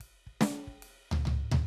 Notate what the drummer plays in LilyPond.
\new DrumStaff \drummode { \time 4/4 \tempo 4 = 144 \tuplet 3/2 { <bd cymr>8 r8 bd8 <sn cymr>8 r8 bd8 cymr8 r8 <tomfh tommh>8 <tomfh tommh>8 r8 <tommh tomfh>8 } | }